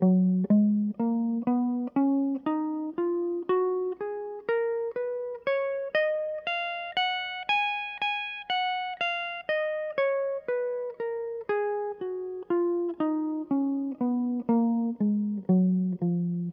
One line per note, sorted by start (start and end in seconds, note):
0.03 0.48 F#3
0.51 0.94 G#3
1.00 1.45 A#3
1.47 1.92 B3
1.96 2.40 C#4
2.47 2.95 D#4
2.98 3.45 F4
3.49 3.96 F#4
4.01 4.43 G#4
4.49 4.93 A#4
4.96 5.38 B4
5.47 5.91 C#5
5.95 6.41 D#5
6.47 6.94 F5
6.97 7.46 F#5
7.49 8.00 G#5
8.02 8.45 G#5
8.50 8.97 F#5
9.01 9.43 F5
9.49 9.94 D#5
9.98 10.41 C#5
10.49 10.94 B4
11.00 11.45 A#4
11.49 11.94 G#4
12.01 12.45 F#4
12.51 12.95 F4
13.00 13.45 D#4
13.51 13.96 C#4
14.01 14.44 B3
14.49 14.95 A#3
15.01 15.43 G#3
15.49 15.97 F#3
16.02 16.53 F3